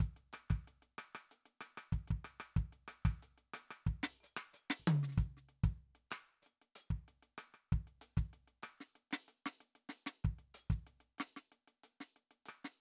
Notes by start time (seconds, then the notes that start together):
0.01 kick, closed hi-hat
0.17 closed hi-hat
0.34 cross-stick, closed hi-hat
0.51 kick, cross-stick
0.68 closed hi-hat
0.83 closed hi-hat
0.99 cross-stick
1.16 cross-stick
1.32 closed hi-hat
1.47 closed hi-hat
1.62 cross-stick, closed hi-hat
1.78 cross-stick
1.93 kick, closed hi-hat
2.09 kick, closed hi-hat
2.25 cross-stick, closed hi-hat
2.41 cross-stick
2.57 kick, closed hi-hat
2.73 closed hi-hat
2.89 cross-stick, closed hi-hat
3.06 kick, cross-stick
3.24 closed hi-hat
3.39 closed hi-hat
3.55 cross-stick, closed hi-hat
3.72 cross-stick
3.87 kick, closed hi-hat
4.04 snare
4.21 hi-hat pedal, open hi-hat
4.38 cross-stick
4.54 hi-hat pedal
4.71 snare
4.80 kick
4.88 high tom
5.04 snare
5.09 snare
5.12 snare
5.15 kick, snare
5.20 closed hi-hat
5.38 snare
5.50 closed hi-hat
5.64 kick, closed hi-hat
5.96 closed hi-hat
6.12 closed hi-hat, cross-stick
6.43 hi-hat pedal
6.47 closed hi-hat
6.63 closed hi-hat
6.76 closed hi-hat
6.91 kick
7.09 closed hi-hat
7.24 closed hi-hat
7.39 cross-stick, closed hi-hat
7.55 cross-stick
7.73 kick, closed hi-hat
7.88 closed hi-hat
8.02 closed hi-hat
8.18 kick, snare
8.34 closed hi-hat
8.49 closed hi-hat
8.64 cross-stick, closed hi-hat
8.81 snare
8.96 closed hi-hat
9.12 snare, closed hi-hat
9.29 closed hi-hat
9.47 snare
9.61 closed hi-hat
9.76 closed hi-hat
9.90 snare, closed hi-hat
10.07 snare
10.25 kick, closed hi-hat
10.39 closed hi-hat
10.55 closed hi-hat
10.71 kick, snare
10.88 closed hi-hat
11.01 closed hi-hat
11.19 snare, closed hi-hat
11.37 snare
11.53 closed hi-hat
11.68 closed hi-hat
11.84 closed hi-hat
12.01 snare
12.17 closed hi-hat
12.32 closed hi-hat
12.47 cross-stick, closed hi-hat
12.65 snare